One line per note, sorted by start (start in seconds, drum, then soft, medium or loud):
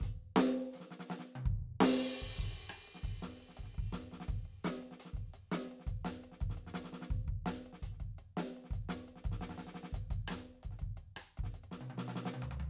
0.01 open hi-hat medium
0.01 kick soft
0.36 open hi-hat medium
0.36 snare loud
0.73 snare soft
0.73 hi-hat pedal medium
0.80 snare soft
0.91 snare soft
0.99 snare soft
1.08 snare medium
1.08 hi-hat pedal soft
1.19 snare soft
1.35 high tom medium
1.45 kick medium
1.80 snare loud
1.80 crash medium
2.20 kick soft
2.20 closed hi-hat soft
2.25 snare soft
2.36 kick soft
2.36 closed hi-hat soft
2.52 closed hi-hat soft
2.69 cross-stick medium
2.69 closed hi-hat medium
2.87 closed hi-hat soft
2.94 snare soft
3.03 kick soft
3.03 closed hi-hat soft
3.22 snare medium
3.22 closed hi-hat medium
3.40 closed hi-hat soft
3.49 snare soft
3.57 kick soft
3.57 closed hi-hat medium
3.63 snare soft
3.74 kick soft
3.74 closed hi-hat soft
3.92 snare medium
3.92 closed hi-hat medium
4.11 snare soft
4.11 closed hi-hat soft
4.20 snare soft
4.28 kick soft
4.28 closed hi-hat medium
4.45 closed hi-hat soft
4.64 closed hi-hat medium
4.64 snare medium
4.82 closed hi-hat soft
4.91 snare soft
5.00 closed hi-hat medium
5.05 snare soft
5.13 kick soft
5.13 closed hi-hat soft
5.34 closed hi-hat medium
5.52 closed hi-hat medium
5.52 snare medium
5.71 closed hi-hat soft
5.80 snare soft
5.86 kick soft
5.86 closed hi-hat medium
6.05 closed hi-hat medium
6.05 snare medium
6.23 closed hi-hat soft
6.32 snare soft
6.40 kick medium
6.40 closed hi-hat medium
6.50 snare soft
6.57 closed hi-hat soft
6.66 snare soft
6.74 snare medium
6.84 snare soft
6.93 snare soft
7.01 snare soft
7.10 kick medium
7.28 kick soft
7.46 closed hi-hat medium
7.46 snare medium
7.66 closed hi-hat soft
7.73 snare soft
7.82 closed hi-hat medium
7.82 kick soft
7.92 snare soft
8.00 kick soft
8.00 closed hi-hat soft
8.18 closed hi-hat soft
8.37 snare medium
8.37 closed hi-hat medium
8.56 closed hi-hat soft
8.64 snare soft
8.70 kick soft
8.70 closed hi-hat medium
8.89 snare medium
8.89 closed hi-hat medium
9.08 closed hi-hat soft
9.16 snare soft
9.24 kick soft
9.24 closed hi-hat medium
9.31 snare soft
9.41 snare soft
9.49 snare soft
9.55 snare soft
9.55 hi-hat pedal soft
9.67 snare soft
9.74 snare soft
9.83 snare soft
9.92 kick soft
9.92 closed hi-hat medium
10.10 kick soft
10.10 closed hi-hat medium
10.27 open hi-hat medium
10.27 cross-stick medium
10.27 snare medium
10.53 snare soft
10.63 kick soft
10.63 open hi-hat medium
10.71 snare soft
10.79 kick soft
10.79 open hi-hat soft
10.97 open hi-hat soft
11.16 open hi-hat medium
11.16 cross-stick medium
11.37 kick soft
11.37 open hi-hat soft
11.44 snare soft
11.54 open hi-hat medium
11.63 open hi-hat soft
11.71 snare soft
11.81 high tom medium
11.90 high tom medium
11.98 snare medium
12.08 snare soft
12.08 hi-hat pedal soft
12.15 snare medium
12.25 snare medium
12.34 high tom medium
12.41 hi-hat pedal medium
12.41 floor tom medium
12.51 floor tom medium
12.60 floor tom medium